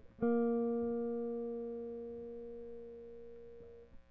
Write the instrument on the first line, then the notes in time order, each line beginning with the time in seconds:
electric guitar
0.23 A#3